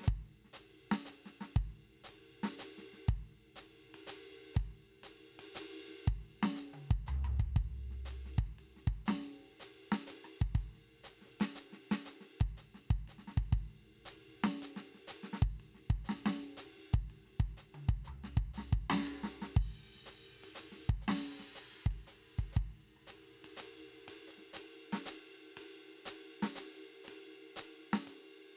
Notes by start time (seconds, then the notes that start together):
0.01 snare, hi-hat pedal
0.04 kick, snare
0.10 ride
0.26 hi-hat pedal
0.45 snare
0.53 hi-hat pedal, ride
0.92 snare, ride
1.05 hi-hat pedal
1.10 ride
1.26 snare
1.41 snare
1.56 kick, ride
2.04 hi-hat pedal
2.09 ride
2.44 snare, ride
2.59 hi-hat pedal
2.63 ride
2.78 snare
2.93 snare
3.09 kick, ride
3.56 hi-hat pedal, ride
3.94 ride
4.07 hi-hat pedal, ride
4.55 kick, hi-hat pedal
4.60 ride
5.04 hi-hat pedal, ride
5.39 ride
5.55 hi-hat pedal, ride
5.88 snare
6.08 kick, ride
6.43 snare
6.56 hi-hat pedal
6.61 ride
6.74 high tom
6.91 kick
7.07 floor tom, hi-hat pedal
7.25 mid tom
7.40 kick
7.56 kick, ride
7.76 snare
7.91 snare
8.06 hi-hat pedal
8.11 ride
8.26 snare, hi-hat pedal
8.38 kick
8.43 ride
8.59 ride
8.77 snare
8.87 kick
9.06 snare, hi-hat pedal, ride
9.49 snare
9.60 hi-hat pedal, ride
9.92 snare, ride
10.07 hi-hat pedal, ride
10.25 cross-stick
10.42 kick
10.51 kick, hi-hat pedal
10.58 ride
10.74 snare
11.04 hi-hat pedal
11.09 ride
11.22 snare
11.26 hi-hat pedal
11.40 snare, ride
11.56 hi-hat pedal, ride
11.73 snare
11.91 snare
12.06 hi-hat pedal, ride
12.21 snare
12.41 kick, ride
12.57 hi-hat pedal, ride
12.75 snare
12.91 kick
13.08 hi-hat pedal, ride
13.19 snare
13.28 snare
13.38 kick, ride
13.53 kick, ride
13.95 snare
14.06 hi-hat pedal, ride
14.44 snare, ride
14.62 hi-hat pedal, ride
14.76 snare
14.95 snare
15.08 hi-hat pedal, ride
15.24 snare
15.33 snare
15.42 kick, ride
15.60 ride
15.75 snare
15.90 kick
16.05 hi-hat pedal
16.09 snare, ride
16.26 snare
16.57 hi-hat pedal, ride
16.77 snare
16.94 kick, ride
17.10 ride
17.26 snare
17.40 kick
17.57 hi-hat pedal, ride
17.74 high tom
17.89 kick
18.05 floor tom, hi-hat pedal
18.24 snare
18.37 kick
18.54 hi-hat pedal, ride
18.58 snare
18.73 kick
18.90 snare, ride
19.07 ride
19.24 snare
19.42 snare
19.57 kick, crash
19.95 snare
20.06 hi-hat pedal, ride
20.44 ride
20.55 hi-hat pedal
20.60 ride
20.72 snare
20.89 kick
21.02 hi-hat pedal
21.08 snare, crash
21.40 snare
21.55 hi-hat pedal, ride
21.73 snare
21.86 kick
21.91 ride
22.07 hi-hat pedal, ride
22.39 kick, ride
22.53 hi-hat pedal
22.57 kick, ride
22.97 cross-stick
23.07 hi-hat pedal, ride
23.45 ride
23.57 hi-hat pedal, ride
24.08 ride
24.27 hi-hat pedal
24.38 snare
24.53 hi-hat pedal, ride
24.93 snare, ride
25.06 hi-hat pedal, ride
25.57 ride
26.06 hi-hat pedal, ride
26.43 snare, ride
26.56 hi-hat pedal, ride
27.04 hi-hat pedal
27.08 ride
27.56 hi-hat pedal, ride
27.93 snare, ride
28.06 hi-hat pedal, ride